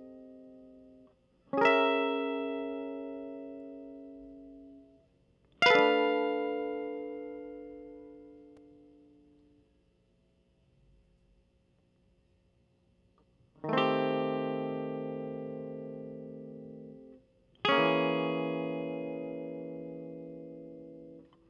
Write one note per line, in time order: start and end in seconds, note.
1.53 5.00 C#4
1.58 5.02 G#4
1.58 4.74 A#4
1.65 5.05 E5
5.62 9.01 B4
5.62 8.26 F5
5.70 9.68 A4
5.75 9.69 D4
13.65 17.01 D#3
13.69 17.18 A3
13.73 17.22 C4
13.78 17.15 G4
17.65 21.27 C#4
17.65 20.78 G#4
17.72 21.24 A#3
17.79 21.39 E3